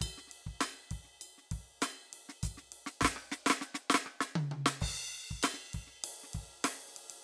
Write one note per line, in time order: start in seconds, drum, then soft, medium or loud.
0.01 kick soft
0.01 ride bell loud
0.08 kick soft
0.12 kick soft
0.18 snare soft
0.27 snare soft
0.27 ride medium
0.46 kick soft
0.60 snare loud
0.60 hi-hat pedal medium
0.60 ride bell loud
0.74 snare soft
0.91 kick soft
0.91 ride medium
0.97 kick soft
1.04 snare soft
1.21 hi-hat pedal soft
1.21 ride bell medium
1.38 snare soft
1.42 snare soft
1.51 kick soft
1.51 ride medium
1.58 kick soft
1.81 snare loud
1.81 hi-hat pedal medium
1.81 ride bell loud
2.13 ride medium
2.29 snare medium
2.43 kick medium
2.43 hi-hat pedal loud
2.43 ride bell medium
2.51 kick soft
2.54 kick soft
2.54 snare soft
2.72 ride medium
2.86 snare medium
3.01 kick soft
3.01 snare loud
3.01 hi-hat pedal loud
3.04 snare loud
3.16 cross-stick medium
3.31 snare medium
3.46 snare loud
3.50 snare loud
3.61 snare medium
3.74 snare medium
3.90 snare loud
3.94 snare loud
4.06 cross-stick medium
4.21 snare medium
4.35 high tom loud
4.51 high tom medium
4.66 snare loud
4.81 kick medium
4.81 crash loud
4.88 kick soft
4.93 kick soft
5.31 kick soft
5.43 snare loud
5.43 hi-hat pedal medium
5.43 ride bell loud
5.54 snare soft
5.73 kick soft
5.73 ride medium
5.81 kick soft
5.87 snare soft
6.04 hi-hat pedal soft
6.04 ride loud
6.23 snare soft
6.33 kick soft
6.33 ride medium
6.41 kick soft
6.64 snare loud
6.64 hi-hat pedal medium
6.64 ride loud
6.88 snare soft
6.96 ride medium
7.03 snare soft
7.10 ride medium